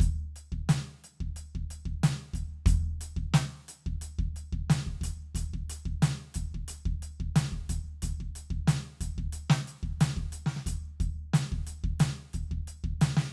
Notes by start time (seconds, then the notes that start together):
0.01 kick, percussion
0.37 percussion
0.53 kick
0.70 snare, percussion
1.05 percussion
1.21 kick
1.37 percussion
1.56 kick
1.71 percussion
1.86 kick
2.04 snare, percussion
2.34 kick, percussion
2.67 kick, percussion
3.02 percussion
3.17 kick
3.35 snare, percussion
3.69 percussion
3.87 kick
4.02 percussion
4.20 kick
4.37 percussion
4.53 kick
4.71 snare, percussion
4.87 kick
5.02 kick, percussion
5.36 kick, percussion
5.54 kick
5.71 percussion
5.86 kick
6.03 snare, percussion
6.35 kick, percussion
6.55 kick
6.69 percussion
6.86 kick
7.03 percussion
7.21 kick
7.37 snare, percussion
7.53 kick
7.70 kick, percussion
8.03 kick, percussion
8.21 kick
8.36 percussion
8.51 kick
8.68 snare, percussion
9.02 kick, percussion
9.19 kick
9.33 percussion
9.51 snare
9.68 percussion
9.84 kick
10.02 snare, percussion
10.18 kick
10.33 percussion
10.47 snare
10.57 snare
10.67 kick, percussion
11.01 kick, percussion
11.34 snare, percussion
11.53 kick
11.68 percussion
11.85 kick
12.01 snare, percussion
12.34 kick, percussion
12.52 kick
12.68 percussion
12.85 kick
13.02 snare, percussion
13.18 snare